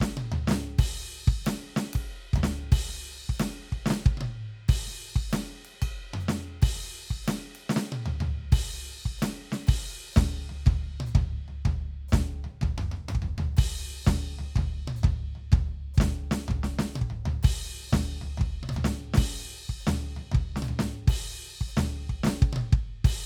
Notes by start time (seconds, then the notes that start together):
0.01 kick, snare
0.18 high tom
0.32 floor tom
0.48 snare
0.52 snare
0.79 kick, crash
1.01 snare
1.03 snare
1.05 snare
1.28 kick
1.45 snare, hi-hat pedal, ride
1.77 snare
1.94 kick, ride
2.34 kick, floor tom, hi-hat pedal
2.44 snare
2.73 kick, crash
2.89 snare
2.92 snare
3.00 snare
3.30 kick
3.34 hi-hat pedal
3.40 snare, ride
3.73 kick
3.86 snare
3.91 snare
4.06 kick
4.18 high tom
4.21 high tom
4.69 kick, crash
4.88 snare
5.16 kick
5.30 snare, hi-hat pedal, ride
5.66 ride
5.74 snare
5.78 snare
5.83 kick, ride bell
6.14 mid tom
6.21 hi-hat pedal
6.29 snare
6.62 kick, crash
6.76 snare
6.84 snare
7.11 kick
7.24 hi-hat pedal
7.28 snare, ride
7.56 ride
7.70 snare
7.77 snare
7.93 high tom
8.06 floor tom
8.21 floor tom
8.53 kick, crash
9.06 kick
9.18 hi-hat pedal
9.23 snare, ride
9.53 snare
9.68 kick, crash
10.13 snare, floor tom, hi-hat pedal
10.18 kick
10.50 floor tom
10.63 kick, floor tom, high tom
11.01 high tom
11.07 hi-hat pedal
11.16 kick, floor tom
11.49 floor tom
11.66 kick, floor tom
12.09 snare, hi-hat pedal
12.14 kick, floor tom
12.45 floor tom
12.62 kick, floor tom
12.79 mid tom
12.92 mid tom
13.09 hi-hat pedal, mid tom
13.15 kick
13.23 floor tom
13.39 floor tom
13.57 kick, crash
14.04 kick, snare, floor tom, hi-hat pedal
14.39 floor tom
14.56 kick, floor tom
14.88 high tom
14.97 hi-hat pedal
15.04 kick, floor tom
15.36 floor tom
15.53 kick, floor tom
15.95 kick, hi-hat pedal
16.01 snare, floor tom
16.32 snare
16.49 kick, floor tom
16.64 snare
16.79 snare
16.94 hi-hat pedal, high tom
17.02 kick
17.11 floor tom
17.26 floor tom
17.44 kick, crash
17.89 hi-hat pedal
17.93 kick, snare, floor tom
18.22 floor tom
18.38 kick, floor tom
18.64 high tom
18.70 hi-hat pedal, high tom
18.75 kick, floor tom
18.85 snare
19.14 kick, snare, hi-hat pedal, crash
19.70 kick
19.81 hi-hat pedal
19.87 snare, floor tom
20.17 floor tom
20.32 kick, floor tom
20.57 snare
20.63 hi-hat pedal, high tom
20.69 floor tom
20.80 snare
21.08 kick, crash
21.61 kick
21.69 hi-hat pedal
21.78 snare, floor tom
22.10 kick
22.24 snare
22.27 snare
22.43 kick
22.53 high tom
22.57 high tom
22.73 kick
23.05 kick, crash